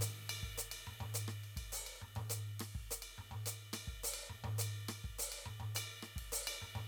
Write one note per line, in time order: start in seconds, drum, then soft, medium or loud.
0.01 hi-hat pedal loud
0.01 ride bell medium
0.30 ride bell loud
0.43 kick soft
0.56 kick soft
0.56 hi-hat pedal loud
0.72 ride bell medium
0.87 high tom medium
1.00 high tom medium
1.14 hi-hat pedal loud
1.14 ride bell medium
1.28 cross-stick medium
1.44 ride bell soft
1.57 kick medium
1.57 ride bell medium
1.72 hi-hat pedal medium
1.87 ride bell medium
2.02 high tom medium
2.15 high tom medium
2.15 ride soft
2.30 hi-hat pedal loud
2.30 ride bell medium
2.60 cross-stick medium
2.60 ride medium
2.75 kick soft
2.91 hi-hat pedal loud
3.02 ride bell medium
3.18 high tom medium
3.31 high tom medium
3.46 hi-hat pedal loud
3.46 ride bell medium
3.73 cross-stick medium
3.73 ride bell loud
3.87 kick soft
4.04 hi-hat pedal loud
4.14 ride bell medium
4.30 high tom medium
4.44 high tom medium
4.58 hi-hat pedal loud
4.58 ride bell medium
4.89 cross-stick medium
4.89 ride bell medium
5.04 kick soft
5.19 hi-hat pedal loud
5.32 ride bell medium
5.46 high tom medium
5.60 high tom medium
5.75 hi-hat pedal loud
5.75 ride bell loud
6.03 cross-stick soft
6.03 ride bell soft
6.16 kick soft
6.16 ride medium
6.32 hi-hat pedal loud
6.47 ride bell loud
6.62 high tom medium
6.75 high tom medium